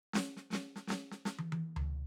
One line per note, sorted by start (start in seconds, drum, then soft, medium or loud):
0.13 snare medium
0.15 snare medium
0.37 snare soft
0.50 snare soft
0.53 snare medium
0.76 snare soft
0.87 snare medium
0.90 snare medium
1.12 snare soft
1.25 snare medium
1.39 high tom medium
1.52 high tom medium
1.76 floor tom medium